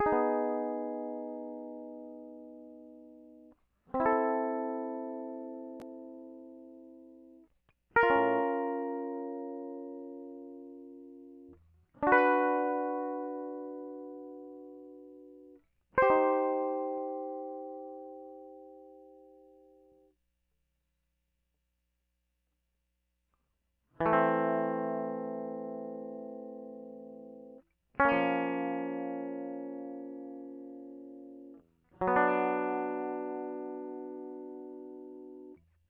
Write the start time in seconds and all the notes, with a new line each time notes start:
0.00 G#4
0.06 D#4
0.13 B3
3.94 C4
4.00 E4
4.06 A4
7.96 A#4
8.03 F4
8.10 C#4
8.18 A2
12.03 D4
12.07 F#4
12.12 B4
15.98 C5
16.02 G4
16.10 D#4
24.01 E3
24.06 A3
24.13 C4
28.00 C#4
28.05 A#3
28.12 F3
32.02 F#3
32.08 B3
32.16 D4